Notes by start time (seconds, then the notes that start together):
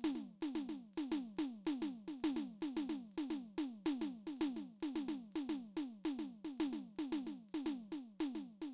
0.01 snare, hi-hat pedal
0.15 snare
0.41 snare, hi-hat pedal
0.55 snare
0.69 snare
0.94 snare, hi-hat pedal
1.12 snare
1.37 snare, hi-hat pedal
1.65 snare, hi-hat pedal
1.82 snare
2.08 snare
2.20 snare, hi-hat pedal
2.36 snare
2.61 snare, hi-hat pedal
2.77 snare
2.81 hi-hat pedal
2.89 snare
3.12 hi-hat pedal
3.18 snare
3.30 snare
3.58 snare, hi-hat pedal
3.86 snare, hi-hat pedal
4.01 snare
4.27 snare
4.37 hi-hat pedal
4.41 snare
4.56 snare
4.80 snare, hi-hat pedal
4.96 snare
5.08 snare
5.32 snare, hi-hat pedal
5.49 snare
5.77 snare, hi-hat pedal
6.04 snare, hi-hat pedal
6.19 snare
6.45 snare
6.58 snare, hi-hat pedal
6.73 snare
6.96 snare, hi-hat pedal
7.12 snare
7.27 snare
7.49 hi-hat pedal
7.54 snare
7.66 snare
7.92 snare, hi-hat pedal
8.20 snare, hi-hat pedal
8.35 snare
8.62 snare